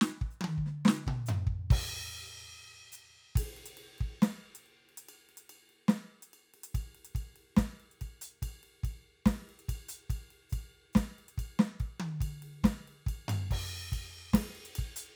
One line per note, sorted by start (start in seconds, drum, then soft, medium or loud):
0.02 snare loud
0.21 kick medium
0.31 hi-hat pedal soft
0.41 high tom loud
0.44 high tom loud
0.58 kick soft
0.66 snare soft
0.85 snare loud
0.88 snare loud
1.07 kick medium
1.07 mid tom loud
1.26 floor tom loud
1.26 hi-hat pedal medium
1.47 kick medium
1.70 kick loud
1.70 crash loud
2.92 hi-hat pedal medium
3.36 kick loud
3.36 hi-hat pedal medium
3.36 ride loud
3.57 ride soft
3.66 closed hi-hat medium
3.77 ride medium
3.98 kick medium
3.98 ride soft
4.22 snare loud
4.22 ride bell medium
4.55 closed hi-hat medium
4.66 ride soft
4.89 ride soft
4.97 closed hi-hat medium
5.09 ride bell medium
5.29 ride soft
5.37 closed hi-hat medium
5.50 ride bell medium
5.69 ride soft
5.88 snare loud
5.88 ride bell medium
6.22 closed hi-hat medium
6.33 ride bell soft
6.54 ride soft
6.63 closed hi-hat medium
6.74 kick medium
6.74 ride bell medium
6.95 ride soft
7.05 closed hi-hat medium
7.15 kick medium
7.15 ride bell medium
7.36 ride soft
7.57 kick medium
7.57 snare loud
7.57 ride bell medium
7.80 ride soft
7.91 closed hi-hat soft
8.01 kick soft
8.01 ride bell medium
8.21 closed hi-hat medium
8.42 kick medium
8.42 ride bell medium
8.63 ride soft
8.84 kick medium
8.84 ride bell medium
9.26 kick medium
9.26 snare loud
9.26 ride medium
9.49 ride soft
9.59 closed hi-hat soft
9.69 kick medium
9.69 ride bell medium
9.89 closed hi-hat loud
10.10 kick medium
10.10 ride bell medium
10.31 ride soft
10.50 kick medium
10.50 hi-hat pedal soft
10.50 ride bell medium
10.75 ride soft
10.93 kick medium
10.93 snare loud
10.93 hi-hat pedal soft
10.97 ride bell medium
11.19 ride soft
11.28 closed hi-hat soft
11.38 kick medium
11.38 ride bell medium
11.59 snare loud
11.80 kick medium
11.80 ride bell soft
12.00 high tom loud
12.21 kick medium
12.21 ride bell medium
12.42 ride medium
12.64 kick medium
12.64 snare loud
12.64 ride bell medium
12.88 ride soft
13.07 kick medium
13.07 ride bell medium
13.28 floor tom loud
13.28 ride bell loud
13.51 kick medium
13.51 crash loud
13.92 kick medium
13.92 ride bell medium
14.14 ride soft
14.33 kick medium
14.33 snare loud
14.33 ride loud
14.55 ride soft
14.65 closed hi-hat medium
14.75 kick medium
14.75 ride bell loud
14.96 closed hi-hat loud